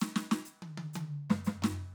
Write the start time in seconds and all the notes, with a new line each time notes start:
0.01 snare, hi-hat pedal
0.16 snare, hi-hat pedal
0.32 snare
0.46 hi-hat pedal
0.63 high tom
0.78 high tom
0.94 hi-hat pedal, high tom
1.30 snare, floor tom
1.45 snare, floor tom, hi-hat pedal
1.63 snare, floor tom